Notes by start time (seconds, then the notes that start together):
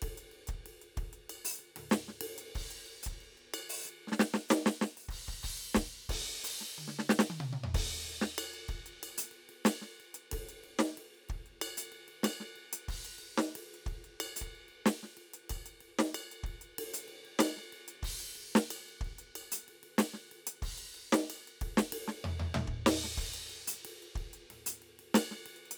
0.03 kick, ride
0.18 closed hi-hat
0.32 ride
0.48 kick, closed hi-hat
0.67 ride
0.82 closed hi-hat
0.98 kick, ride
1.14 closed hi-hat
1.30 ride bell
1.46 open hi-hat
1.60 ride
1.77 cross-stick, high tom, ride, floor tom
1.90 snare, hi-hat pedal
2.09 snare
2.22 ride
2.39 closed hi-hat
2.56 kick, crash
2.71 closed hi-hat
2.87 ride bell
3.04 closed hi-hat, kick
3.21 ride
3.38 closed hi-hat
3.55 ride bell
3.70 open hi-hat
3.86 hi-hat pedal, ride
4.08 snare
4.13 snare
4.20 snare
4.35 snare
4.49 snare, hi-hat pedal
4.67 snare
4.82 snare
4.98 open hi-hat
5.09 kick, crash
5.27 kick, crash
5.43 kick, crash
5.58 open hi-hat
5.75 kick, snare
6.10 kick, ride
6.45 hi-hat pedal, crash
6.61 snare
6.79 high tom
6.88 snare
7.00 snare
7.10 snare
7.20 snare
7.31 high tom
7.41 mid tom
7.54 mid tom
7.64 floor tom
7.75 kick, ride
8.00 kick
8.22 snare, hi-hat pedal
8.39 ride bell
8.54 closed hi-hat
8.69 kick, ride
8.87 closed hi-hat
9.04 ride bell
9.19 closed hi-hat
9.32 ride
9.50 ride
9.65 snare, hi-hat pedal, ride bell
9.82 snare
10.01 ride
10.15 closed hi-hat
10.32 kick, ride
10.49 closed hi-hat
10.65 ride
10.80 snare
10.98 cross-stick, ride
11.15 closed hi-hat
11.30 kick, ride
11.47 closed hi-hat
11.62 ride bell
11.78 closed hi-hat
11.93 ride
12.09 ride
12.24 snare, ride bell
12.41 snare
12.57 ride
12.74 closed hi-hat
12.89 kick, crash
13.06 closed hi-hat
13.19 ride
13.38 snare
13.56 ride
13.75 closed hi-hat
13.87 kick, ride
14.05 closed hi-hat
14.21 ride bell
14.37 closed hi-hat
14.42 kick
14.56 ride
14.69 ride
14.87 snare, ride
15.04 snare
15.18 ride
15.34 closed hi-hat
15.50 kick, ride bell
15.67 closed hi-hat
15.81 ride
16.00 snare
16.15 ride bell
16.32 closed hi-hat
16.44 kick, ride
16.62 closed hi-hat
16.79 ride
16.94 closed hi-hat
17.09 ride
17.26 ride
17.40 snare, ride bell
17.58 snare
17.73 ride
17.89 closed hi-hat
18.03 kick, crash
18.21 closed hi-hat
18.36 ride
18.56 snare
18.71 ride bell
18.89 closed hi-hat
19.02 kick, ride
19.19 closed hi-hat
19.36 ride bell
19.53 closed hi-hat
19.69 ride
19.84 ride
19.99 snare, ride bell
20.14 snare
20.32 ride
20.48 closed hi-hat
20.63 kick, crash
20.78 closed hi-hat
20.95 ride bell
21.13 snare
21.31 ride bell
21.48 closed hi-hat
21.62 kick, ride
21.78 snare
21.93 ride
22.09 snare
22.25 floor tom
22.40 floor tom
22.55 floor tom
22.68 kick
22.87 snare, ride
23.05 snare
23.18 kick, crash
23.34 closed hi-hat
23.50 ride
23.68 closed hi-hat
23.86 ride
24.03 closed hi-hat
24.16 kick, ride
24.34 closed hi-hat
24.51 cross-stick, ride, floor tom
24.67 closed hi-hat
24.83 ride
25.00 ride
25.15 snare, ride bell
25.32 snare
25.47 ride
25.57 closed hi-hat
25.66 closed hi-hat
25.72 closed hi-hat